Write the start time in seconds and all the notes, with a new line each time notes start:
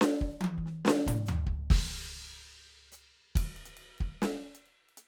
0.02 snare
0.21 kick
0.30 hi-hat pedal
0.41 high tom
0.44 high tom
0.58 kick
0.66 snare
0.85 snare
0.88 snare
1.06 kick, mid tom
1.26 floor tom, hi-hat pedal
1.47 kick
1.70 kick, crash
2.92 hi-hat pedal
3.35 kick, hi-hat pedal, ride
3.56 ride
3.65 closed hi-hat
3.77 ride
3.98 kick, ride
4.22 snare, ride bell
4.55 closed hi-hat
4.66 ride
4.89 ride
4.97 closed hi-hat